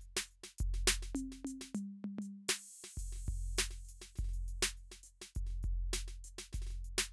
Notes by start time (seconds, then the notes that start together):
0.01 closed hi-hat
0.17 snare
0.25 hi-hat pedal
0.31 closed hi-hat
0.43 snare
0.58 closed hi-hat, kick
0.67 kick
0.70 kick, snare
0.87 snare
1.02 snare
1.15 hi-hat pedal, high tom
1.32 snare
1.45 hi-hat pedal, high tom
1.61 snare
1.75 hi-hat pedal, mid tom
2.04 mid tom
2.18 hi-hat pedal, mid tom
2.49 snare, crash
2.84 snare
2.97 closed hi-hat, kick
3.12 snare
3.16 snare
3.26 kick, closed hi-hat
3.37 kick
3.58 closed hi-hat, snare
3.71 snare
3.85 closed hi-hat, hi-hat pedal
4.01 snare
4.15 kick, snare, closed hi-hat
4.21 snare
4.24 kick, snare
4.29 snare
4.33 closed hi-hat
4.48 closed hi-hat
4.62 snare
4.77 closed hi-hat
4.91 snare
5.03 closed hi-hat, hi-hat pedal
5.22 snare
5.35 closed hi-hat, kick
5.47 snare
5.50 snare
5.63 kick, closed hi-hat
5.72 kick
5.93 closed hi-hat, snare
6.08 snare
6.24 hi-hat pedal
6.38 snare
6.53 closed hi-hat, kick, snare
6.62 kick, snare
6.66 open hi-hat, snare
6.70 snare
6.75 snare
6.84 closed hi-hat
6.98 snare